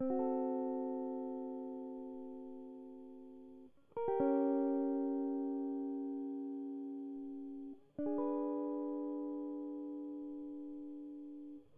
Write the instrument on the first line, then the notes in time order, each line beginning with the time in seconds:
electric guitar
0.00 C4
0.11 F#4
0.20 A4
3.99 A#4
4.09 G4
4.20 C#4
7.99 D4
8.07 G#4
8.19 B4